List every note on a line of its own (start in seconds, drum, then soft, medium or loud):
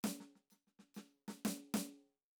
0.03 snare medium
0.03 hi-hat pedal soft
0.20 snare soft
0.35 snare soft
0.50 snare soft
0.50 hi-hat pedal soft
0.67 snare soft
0.79 snare soft
0.94 snare soft
0.94 hi-hat pedal soft
1.28 snare medium
1.45 snare medium
1.74 snare medium